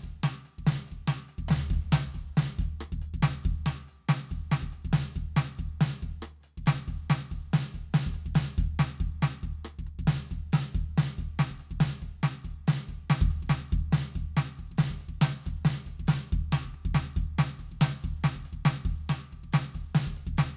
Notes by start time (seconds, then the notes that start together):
0.01 kick, snare, percussion
0.24 snare, percussion
0.46 snare, percussion
0.59 kick
0.67 snare, percussion
0.88 snare, percussion
0.92 kick
1.08 snare, percussion
1.27 snare, percussion
1.39 kick
1.49 snare, floor tom
1.71 kick, percussion
1.93 snare, percussion
2.15 kick, snare, percussion
2.38 snare, percussion
2.59 kick, snare, percussion
2.81 cross-stick, percussion
2.93 kick, snare
3.02 percussion
3.14 kick
3.23 snare, percussion
3.44 kick, snare, percussion
3.67 snare, percussion
3.88 snare, percussion
4.09 snare, percussion
4.30 kick, snare, percussion
4.52 snare, percussion
4.63 kick, snare
4.73 percussion
4.85 kick
4.93 snare, percussion
5.13 kick, snare, percussion
5.37 snare, percussion
5.56 kick, snare, percussion
5.81 snare, percussion
5.94 snare
6.03 kick, percussion
6.23 cross-stick, percussion
6.41 snare, percussion
6.58 kick
6.67 snare, percussion
6.88 kick, percussion
7.10 snare, percussion
7.32 kick, percussion
7.54 snare, percussion
7.62 snare
7.67 snare
7.75 kick, percussion
7.95 snare, percussion
8.07 kick
8.14 percussion
8.26 kick
8.35 snare, percussion
8.49 snare
8.59 kick, percussion
8.80 snare, percussion
9.01 kick, percussion
9.23 snare, percussion
9.32 snare
9.37 snare
9.44 kick, percussion
9.65 cross-stick, percussion
9.74 snare
9.78 kick, snare
9.80 snare
9.87 percussion
10.00 kick
10.08 snare, percussion
10.30 kick, snare, percussion
10.53 snare, percussion
10.75 kick, snare, percussion
10.98 snare, percussion
11.19 kick, percussion
11.40 snare, percussion
11.51 kick, snare
11.60 percussion
11.72 kick
11.81 snare, percussion
12.02 kick, percussion
12.24 snare, percussion
12.45 kick, snare, percussion
12.68 snare, percussion
12.88 kick, snare, percussion
13.10 snare, percussion
13.22 kick, snare
13.31 percussion
13.43 kick
13.50 snare, percussion
13.70 kick, snare, percussion
13.93 snare, percussion
14.13 kick, snare, percussion
14.37 snare, percussion
14.57 kick, snare, percussion
14.72 kick
14.78 snare, percussion
14.91 kick, snare
15.01 percussion
15.09 kick
15.22 snare, percussion
15.43 snare, percussion
15.47 kick, percussion
15.65 snare, percussion
15.84 kick, snare, percussion
16.00 kick
16.08 snare, percussion
16.28 snare
16.33 kick, percussion
16.53 snare, percussion
16.65 kick, snare
16.75 percussion
16.86 kick
16.95 snare, percussion
17.14 kick, snare, percussion
17.39 snare, percussion
17.60 kick, percussion
17.72 kick
17.82 snare, percussion
18.01 kick, snare, percussion
18.24 snare, percussion
18.36 kick
18.46 percussion
18.53 kick
18.66 snare, percussion
18.86 kick, snare
18.90 percussion
19.10 snare, percussion
19.33 kick, percussion
19.44 kick
19.53 snare, percussion
19.69 snare
19.75 kick, percussion
19.95 snare, percussion
20.07 kick, snare
20.17 percussion
20.27 kick
20.38 snare, percussion